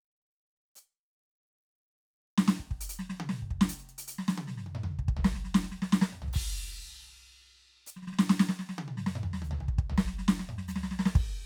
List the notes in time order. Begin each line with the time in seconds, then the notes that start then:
0.76 hi-hat pedal
2.38 snare
2.60 kick
2.71 kick
2.81 closed hi-hat
2.90 closed hi-hat
2.99 snare
3.10 snare
3.20 high tom
3.30 snare
3.43 kick
3.51 kick
3.61 snare
3.69 closed hi-hat
3.89 closed hi-hat
3.99 closed hi-hat
4.08 closed hi-hat
4.19 snare
4.29 snare
4.38 high tom
4.48 snare
4.58 snare
4.67 high tom
4.75 mid tom
4.84 high tom
4.99 kick
5.09 kick
5.17 floor tom
5.25 snare
5.36 snare
5.45 snare
5.55 snare
5.64 snare
5.72 snare
5.82 snare
5.93 snare
6.02 snare
6.13 mid tom
6.22 floor tom
6.28 kick
6.33 kick, crash
7.87 hi-hat pedal
7.97 snare
8.03 snare
8.08 snare
8.13 snare
8.19 snare
8.30 snare
8.49 snare
8.60 snare
8.69 snare
8.79 high tom
8.88 high tom
8.98 snare
9.07 snare
9.16 mid tom
9.24 high tom
9.34 snare
9.42 hi-hat pedal, high tom
9.51 floor tom
9.61 high tom
9.69 kick
9.90 floor tom
9.98 snare
10.08 snare
10.19 snare
10.29 snare, hi-hat pedal
10.40 snare
10.49 mid tom
10.59 snare
10.69 snare, hi-hat pedal
10.76 snare
10.84 snare
10.91 snare
11.00 snare
11.06 snare
11.16 kick, crash